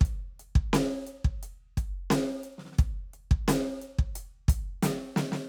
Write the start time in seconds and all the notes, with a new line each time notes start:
0.01 kick, snare
0.05 closed hi-hat
0.40 closed hi-hat
0.56 kick
0.73 snare, closed hi-hat
1.07 closed hi-hat
1.25 kick
1.43 closed hi-hat
1.78 kick, closed hi-hat
2.11 snare, closed hi-hat
2.44 closed hi-hat
2.53 closed hi-hat
2.59 snare
2.66 snare
2.72 snare
2.79 kick, snare, closed hi-hat
3.14 closed hi-hat
3.31 kick
3.48 closed hi-hat, snare
3.82 closed hi-hat
3.99 kick
4.16 closed hi-hat
4.49 kick, closed hi-hat
4.83 closed hi-hat, snare
4.90 snare
5.17 snare
5.32 snare